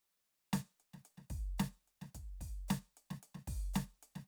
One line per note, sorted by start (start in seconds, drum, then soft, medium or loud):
0.53 closed hi-hat medium
0.53 snare medium
0.80 closed hi-hat soft
0.93 snare soft
1.05 closed hi-hat soft
1.17 snare soft
1.30 kick soft
1.30 open hi-hat medium
1.58 snare medium
1.58 closed hi-hat medium
1.58 hi-hat pedal soft
1.87 closed hi-hat soft
2.01 snare soft
2.15 kick soft
2.15 closed hi-hat medium
2.41 kick soft
2.41 open hi-hat medium
2.68 closed hi-hat medium
2.68 snare medium
2.68 hi-hat pedal medium
2.97 closed hi-hat soft
3.10 snare soft
3.23 closed hi-hat soft
3.34 snare soft
3.47 kick soft
3.47 open hi-hat medium
3.74 snare medium
3.74 closed hi-hat medium
3.74 hi-hat pedal medium
4.03 closed hi-hat soft
4.15 snare soft